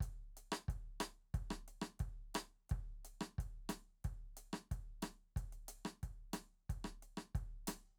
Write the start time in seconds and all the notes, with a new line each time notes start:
0.01 kick, closed hi-hat
0.37 closed hi-hat
0.52 cross-stick
0.69 kick, closed hi-hat
1.01 cross-stick, closed hi-hat
1.35 kick, closed hi-hat
1.51 cross-stick
1.68 closed hi-hat
1.82 cross-stick
2.00 kick, closed hi-hat
2.35 cross-stick, closed hi-hat
2.70 kick, closed hi-hat
3.05 closed hi-hat
3.21 cross-stick
3.39 kick, closed hi-hat
3.70 cross-stick, closed hi-hat
4.05 kick, closed hi-hat
4.37 closed hi-hat
4.53 cross-stick
4.72 kick, closed hi-hat
5.03 cross-stick, closed hi-hat
5.37 kick, closed hi-hat
5.53 closed hi-hat
5.69 closed hi-hat
5.85 cross-stick
6.03 kick, closed hi-hat
6.34 cross-stick, closed hi-hat
6.70 kick, closed hi-hat
6.85 cross-stick
7.03 closed hi-hat
7.18 cross-stick
7.35 kick, closed hi-hat
7.68 cross-stick, open hi-hat